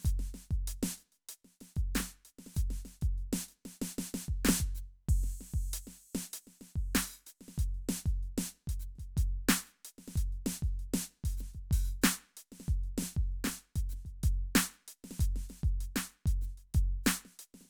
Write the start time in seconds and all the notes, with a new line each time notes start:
0.01 kick, hi-hat pedal
0.05 closed hi-hat
0.19 snare
0.34 snare, closed hi-hat
0.51 kick, closed hi-hat
0.67 closed hi-hat
0.83 snare
0.97 closed hi-hat
1.12 closed hi-hat
1.29 closed hi-hat
1.44 snare
1.60 snare, closed hi-hat
1.76 closed hi-hat, kick
1.95 open hi-hat, snare
2.00 snare
2.25 open hi-hat
2.38 snare
2.46 snare
2.53 closed hi-hat, kick, hi-hat pedal
2.70 snare
2.85 snare, closed hi-hat
3.01 closed hi-hat, kick
3.18 closed hi-hat
3.33 snare
3.48 closed hi-hat
3.65 snare
3.81 snare
3.98 snare
4.14 snare
4.28 kick
4.45 snare
4.49 snare
4.60 kick
4.75 hi-hat pedal
5.09 kick, crash
5.23 snare
5.41 snare
5.54 kick
5.73 closed hi-hat
5.87 snare
5.99 closed hi-hat
6.15 snare
6.33 closed hi-hat
6.47 snare
6.61 snare, closed hi-hat
6.76 kick, closed hi-hat
6.95 open hi-hat, snare
7.26 open hi-hat, hi-hat pedal
7.41 snare
7.48 snare
7.58 closed hi-hat, kick
7.74 closed hi-hat
7.89 snare
8.06 kick, closed hi-hat
8.23 closed hi-hat
8.38 snare
8.53 closed hi-hat
8.67 open hi-hat, kick
8.79 hi-hat pedal
8.95 kick, snare
8.99 closed hi-hat
9.17 open hi-hat, kick
9.49 snare, hi-hat pedal
9.67 closed hi-hat
9.85 closed hi-hat
9.98 snare
10.07 snare
10.16 closed hi-hat, kick
10.32 closed hi-hat
10.46 snare
10.62 kick, closed hi-hat
10.79 closed hi-hat
10.94 snare
11.09 closed hi-hat
11.24 open hi-hat, kick
11.37 snare, hi-hat pedal
11.53 kick, closed hi-hat
11.71 open hi-hat, kick
12.02 snare, hi-hat pedal
12.20 closed hi-hat
12.37 closed hi-hat
12.52 snare
12.60 snare
12.68 kick, closed hi-hat
12.83 closed hi-hat
12.98 snare
13.02 snare
13.14 kick, closed hi-hat
13.32 closed hi-hat
13.44 snare
13.47 snare
13.59 closed hi-hat
13.76 open hi-hat, kick
13.89 snare, hi-hat pedal
14.05 kick, closed hi-hat
14.23 open hi-hat, kick
14.55 snare, hi-hat pedal
14.71 closed hi-hat
14.88 closed hi-hat
15.04 snare
15.11 snare
15.19 closed hi-hat, kick
15.36 snare
15.49 snare, closed hi-hat
15.63 kick, closed hi-hat
15.80 closed hi-hat
15.96 snare
16.09 closed hi-hat
16.26 open hi-hat, kick
16.41 snare, hi-hat pedal
16.57 closed hi-hat
16.74 closed hi-hat, kick
17.04 snare, hi-hat pedal
17.09 closed hi-hat
17.25 snare
17.39 closed hi-hat
17.54 snare
17.61 snare
17.65 snare